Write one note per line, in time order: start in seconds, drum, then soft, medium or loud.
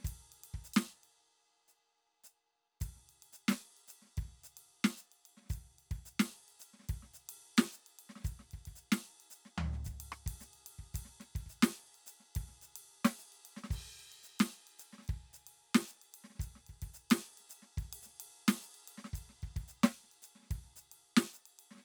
0.01 kick soft
0.01 snare soft
0.01 hi-hat pedal medium
0.07 ride medium
0.32 ride soft
0.44 ride medium
0.54 kick soft
0.64 hi-hat pedal medium
0.74 snare loud
0.74 ride bell medium
1.03 ride soft
1.68 hi-hat pedal soft
2.24 hi-hat pedal medium
2.80 kick soft
2.80 hi-hat pedal medium
2.80 ride medium
2.96 snare soft
3.09 ride soft
3.22 ride soft
3.33 hi-hat pedal medium
3.48 snare medium
3.48 ride medium
3.51 snare medium
3.77 ride soft
3.88 hi-hat pedal medium
3.88 ride medium
4.02 snare soft
4.05 snare soft
4.17 kick soft
4.17 ride soft
4.27 snare soft
4.44 hi-hat pedal medium
4.44 ride soft
4.57 ride medium
4.84 snare loud
4.84 ride soft
4.97 hi-hat pedal medium
5.12 ride soft
5.25 ride soft
5.37 snare soft
5.42 snare soft
5.45 snare soft
5.49 kick soft
5.49 snare soft
5.49 hi-hat pedal medium
5.54 ride medium
5.79 ride soft
5.91 kick soft
5.91 ride soft
6.05 hi-hat pedal medium
6.19 snare loud
6.19 ride loud
6.48 ride soft
6.60 hi-hat pedal medium
6.60 ride soft
6.73 snare soft
6.79 snare soft
6.83 snare soft
6.89 kick soft
6.89 ride medium
7.02 snare soft
7.14 hi-hat pedal medium
7.14 ride soft
7.29 ride medium
7.57 snare loud
7.57 ride medium
7.72 snare soft
7.72 hi-hat pedal medium
7.86 ride soft
7.99 ride medium
8.09 snare soft
8.16 snare soft
8.20 snare soft
8.24 kick soft
8.24 hi-hat pedal medium
8.24 ride medium
8.39 snare soft
8.51 kick soft
8.51 ride soft
8.65 kick soft
8.65 ride soft
8.76 hi-hat pedal medium
8.92 snare medium
8.92 ride medium
9.20 ride soft
9.30 hi-hat pedal medium
9.30 ride soft
9.45 snare soft
9.58 floor tom loud
9.73 snare soft
9.85 kick soft
9.85 hi-hat pedal medium
9.85 ride soft
10.00 ride medium
10.12 cross-stick medium
10.26 kick soft
10.26 ride medium
10.40 snare soft
10.40 hi-hat pedal medium
10.53 ride soft
10.66 ride medium
10.79 kick soft
10.79 snare soft
10.94 kick soft
10.94 hi-hat pedal medium
10.94 ride medium
11.05 snare soft
11.20 snare soft
11.20 ride soft
11.35 kick soft
11.35 ride medium
11.46 kick soft
11.46 hi-hat pedal medium
11.62 snare loud
11.62 ride loud
11.94 ride soft
12.06 hi-hat pedal medium
12.06 ride medium
12.20 snare soft
12.35 kick soft
12.35 ride medium
12.48 snare soft
12.61 hi-hat pedal medium
12.61 ride soft
12.76 ride medium
13.05 snare loud
13.05 ride loud
13.19 hi-hat pedal medium
13.32 ride soft
13.45 ride medium
13.56 snare soft
13.64 snare soft
13.69 kick medium
13.69 snare soft
13.69 hi-hat pedal medium
13.69 crash medium
13.99 ride soft
14.12 ride soft
14.23 hi-hat pedal medium
14.40 snare loud
14.40 ride medium
14.67 ride soft
14.79 hi-hat pedal medium
14.79 ride medium
14.93 snare soft
14.98 snare soft
15.02 snare soft
15.02 hi-hat pedal soft
15.08 kick medium
15.08 ride soft
15.33 hi-hat pedal medium
15.33 ride soft
15.47 ride medium
15.75 snare loud
15.75 ride medium
15.87 snare soft
15.87 hi-hat pedal medium
15.94 snare soft
16.02 ride soft
16.11 hi-hat pedal soft
16.11 ride medium
16.24 snare soft
16.30 snare soft
16.35 snare soft
16.39 kick soft
16.39 hi-hat pedal medium
16.39 ride medium
16.55 snare soft
16.67 kick soft
16.67 ride soft
16.82 kick soft
16.82 ride medium
16.94 hi-hat pedal medium
17.10 snare loud
17.10 ride loud
17.37 snare soft
17.37 ride soft
17.49 hi-hat pedal medium
17.49 ride medium
17.62 snare soft
17.77 kick soft
17.77 ride soft
17.93 ride medium
18.02 snare soft
18.02 hi-hat pedal medium
18.20 ride medium
18.48 snare loud
18.48 ride loud
18.62 hi-hat pedal medium
18.74 ride soft
18.87 hi-hat pedal soft
18.87 ride medium
18.98 snare soft
19.04 snare soft
19.13 kick soft
19.13 hi-hat pedal medium
19.13 ride medium
19.29 snare soft
19.42 kick soft
19.42 ride soft
19.56 kick soft
19.56 ride soft
19.68 hi-hat pedal medium
19.83 snare loud
19.83 ride medium
20.03 snare soft
20.11 ride soft
20.22 hi-hat pedal medium
20.22 ride soft
20.35 snare soft
20.39 snare soft
20.42 snare soft
20.45 snare soft
20.51 kick soft
20.51 ride medium
20.63 snare soft
20.67 snare soft
20.76 hi-hat pedal medium
20.80 ride soft
20.92 ride medium
21.17 snare loud
21.17 ride medium
21.33 hi-hat pedal medium
21.46 ride soft
21.59 ride soft
21.71 snare soft
21.75 snare soft
21.77 snare soft